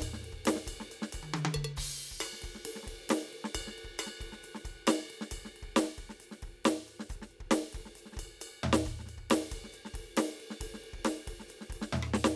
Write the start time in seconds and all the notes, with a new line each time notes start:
0.01 kick, hi-hat pedal, ride bell
0.07 kick
0.14 snare
0.21 snare, ride
0.33 kick
0.45 snare, hi-hat pedal, ride
0.56 snare
0.67 kick, ride bell
0.74 kick
0.81 snare
0.91 hi-hat pedal, ride bell
1.02 snare
1.13 kick, ride bell
1.21 kick, high tom
1.34 hi-hat pedal, high tom
1.45 high tom
1.55 kick, percussion
1.65 percussion
1.77 kick, hi-hat pedal, crash
2.12 kick
2.17 kick
2.21 cross-stick, hi-hat pedal, ride bell
2.33 snare
2.42 kick, ride
2.50 kick
2.55 snare
2.65 hi-hat pedal, ride
2.76 snare
2.84 kick, snare
2.88 ride
2.93 kick
3.10 snare, hi-hat pedal, ride
3.33 ride
3.45 snare
3.55 kick, hi-hat pedal, ride bell
3.62 kick
3.68 snare
3.79 ride
3.85 kick
3.90 kick
3.99 cross-stick, hi-hat pedal, ride bell
4.07 snare
4.21 kick, ride
4.27 kick
4.33 snare
4.43 hi-hat pedal, ride
4.55 snare
4.65 kick, ride bell
4.87 snare, hi-hat pedal, ride bell
5.11 ride
5.21 snare
5.32 kick, hi-hat pedal, ride bell
5.39 kick
5.45 snare
5.57 ride
5.63 kick
5.69 kick
5.77 snare, hi-hat pedal, ride bell
5.84 snare
5.98 kick, ride bell
6.10 snare
6.21 hi-hat pedal, ride
6.32 snare
6.43 kick, ride
6.65 snare, hi-hat pedal, ride, floor tom
6.89 ride bell
7.00 snare
7.10 kick, snare, hi-hat pedal, ride
7.17 kick
7.22 snare
7.32 ride
7.41 kick
7.46 kick
7.51 snare, hi-hat pedal, ride
7.73 kick, ride
7.81 kick
7.86 snare
7.96 hi-hat pedal, ride
8.06 snare
8.13 snare
8.17 kick, ride bell
8.24 kick
8.41 hi-hat pedal, ride bell
8.64 floor tom
8.73 snare
8.86 kick, hi-hat pedal, ride bell
8.97 kick, snare
9.06 snare, ride bell
9.18 kick
9.23 kick
9.31 snare, hi-hat pedal, ride
9.42 snare
9.52 kick, ride bell
9.58 kick
9.64 snare
9.73 hi-hat pedal, ride
9.86 snare
9.94 kick, ride
10.01 kick
10.17 snare, hi-hat pedal, ride
10.41 ride
10.51 snare
10.61 kick, hi-hat pedal, ride
10.67 kick
10.74 snare
10.84 ride
10.94 kick
10.99 kick
11.05 snare, hi-hat pedal, ride
11.28 kick, ride
11.34 kick
11.40 snare
11.49 hi-hat pedal, ride
11.61 snare
11.70 kick, ride
11.77 kick
11.82 snare
11.93 hi-hat pedal, floor tom
12.03 cross-stick
12.14 snare
12.25 snare